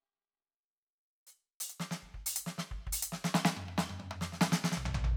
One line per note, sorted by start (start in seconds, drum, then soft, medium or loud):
1.27 hi-hat pedal soft
1.60 closed hi-hat loud
1.69 closed hi-hat medium
1.80 snare medium
1.91 snare medium
2.02 kick soft
2.14 kick soft
2.26 closed hi-hat loud
2.36 closed hi-hat loud
2.46 snare medium
2.58 snare medium
2.71 kick soft
2.87 kick medium
2.92 closed hi-hat loud
3.02 closed hi-hat loud
3.12 snare medium
3.24 snare loud
3.34 snare loud
3.45 snare loud
3.57 high tom medium
3.68 high tom soft
3.78 snare medium
3.89 high tom medium
4.00 high tom medium
4.11 high tom medium
4.21 snare medium
4.32 snare medium
4.41 snare loud
4.52 snare loud
4.64 snare loud
4.72 snare medium
4.77 floor tom loud
4.85 floor tom loud
4.94 floor tom loud
5.04 floor tom medium